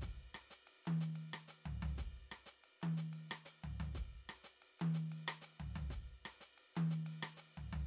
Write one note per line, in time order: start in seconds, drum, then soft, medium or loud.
0.01 kick soft
0.01 hi-hat pedal medium
0.01 ride medium
0.34 cross-stick medium
0.34 ride medium
0.50 hi-hat pedal medium
0.67 ride soft
0.85 high tom medium
0.85 ride soft
1.01 hi-hat pedal medium
1.15 ride soft
1.33 cross-stick medium
1.48 hi-hat pedal medium
1.48 ride soft
1.65 floor tom soft
1.82 floor tom medium
1.82 ride soft
1.97 kick soft
1.97 hi-hat pedal medium
1.97 ride soft
2.31 cross-stick medium
2.31 ride soft
2.46 hi-hat pedal medium
2.64 ride soft
2.81 high tom medium
2.81 ride soft
2.97 hi-hat pedal medium
3.13 ride soft
3.18 hi-hat pedal soft
3.31 cross-stick medium
3.45 hi-hat pedal medium
3.45 ride soft
3.63 floor tom soft
3.80 floor tom medium
3.80 ride soft
3.95 kick soft
3.95 hi-hat pedal medium
3.95 ride soft
4.29 cross-stick medium
4.29 ride medium
4.44 hi-hat pedal medium
4.62 ride soft
4.79 high tom medium
4.79 ride soft
4.94 hi-hat pedal medium
5.12 ride medium
5.28 cross-stick medium
5.41 hi-hat pedal medium
5.41 ride medium
5.60 floor tom soft
5.75 floor tom medium
5.75 ride soft
5.90 kick soft
5.90 hi-hat pedal medium
5.90 ride soft
6.25 cross-stick medium
6.25 ride medium
6.40 hi-hat pedal medium
6.58 ride soft
6.76 high tom medium
6.76 ride soft
6.90 hi-hat pedal medium
7.06 ride medium
7.11 hi-hat pedal soft
7.22 cross-stick medium
7.37 hi-hat pedal medium
7.37 ride soft
7.57 floor tom soft
7.72 floor tom medium
7.72 ride soft